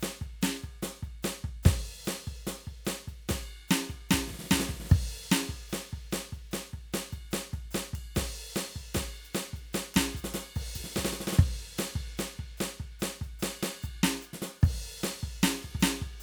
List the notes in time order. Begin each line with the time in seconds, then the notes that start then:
0.01 snare, hi-hat pedal, ride bell
0.22 kick, ride
0.42 snare, hi-hat pedal, ride bell
0.64 kick, ride
0.83 snare, hi-hat pedal, ride bell
1.03 kick, ride
1.23 snare, hi-hat pedal, ride bell
1.45 kick
1.64 kick, snare, hi-hat pedal, crash
2.05 snare, hi-hat pedal, ride bell
2.27 kick, ride
2.47 snare, hi-hat pedal, ride bell
2.67 kick, ride
2.86 snare, hi-hat pedal, ride bell
3.08 kick, ride
3.29 kick, snare, hi-hat pedal, ride bell
3.49 ride
3.69 snare, hi-hat pedal, ride bell
3.90 kick, ride
4.10 snare, hi-hat pedal, ride
4.14 kick
4.28 kick, snare
4.34 snare
4.40 snare
4.45 snare
4.49 kick, snare, hi-hat pedal
4.60 snare
4.69 kick, snare
4.75 snare
4.81 snare
4.85 snare
4.90 kick, hi-hat pedal, crash
5.31 snare, hi-hat pedal, ride bell
5.50 kick
5.70 snare, hi-hat pedal, ride bell
5.93 kick, ride bell
6.12 snare, hi-hat pedal, ride bell
6.33 kick, ride
6.52 snare, hi-hat pedal, ride bell
6.74 kick, ride bell
6.93 snare, hi-hat pedal, ride bell
7.13 kick, ride
7.32 snare, hi-hat pedal
7.54 kick, ride bell
7.65 kick
7.72 snare, hi-hat pedal
7.94 kick, ride bell
8.16 kick, snare, hi-hat pedal, crash
8.56 snare, hi-hat pedal, ride bell
8.76 kick
8.95 kick, snare, hi-hat pedal, ride bell
9.15 ride bell
9.25 ride
9.34 snare, hi-hat pedal, ride
9.54 kick, ride
9.74 snare, hi-hat pedal, ride
9.95 kick, snare, ride bell
10.15 kick, hi-hat pedal, ride bell
10.25 snare
10.35 snare, ride bell
10.55 kick, hi-hat pedal, crash
10.76 kick, ride
10.85 snare
10.94 snare, hi-hat pedal
10.99 kick
11.05 snare
11.13 snare
11.21 snare
11.28 snare
11.33 snare
11.39 kick, crash
11.78 snare, hi-hat pedal, ride bell
11.96 kick
12.18 snare, hi-hat pedal, ride bell
12.39 kick, ride bell
12.58 snare, hi-hat pedal, ride bell
12.81 kick
13.00 snare, hi-hat pedal, ride bell
13.22 kick, ride
13.40 snare, hi-hat pedal, ride bell
13.63 snare, ride bell
13.83 kick, hi-hat pedal, ride bell
14.04 kick, snare
14.22 hi-hat pedal, ride bell
14.34 snare
14.43 snare, ride
14.61 kick, hi-hat pedal, crash
15.02 snare, hi-hat pedal, ride bell
15.24 kick, ride bell
15.43 snare, hi-hat pedal, ride
15.63 kick, ride bell
15.76 kick
15.80 snare, hi-hat pedal, ride bell
16.02 kick
16.06 ride bell
16.21 hi-hat pedal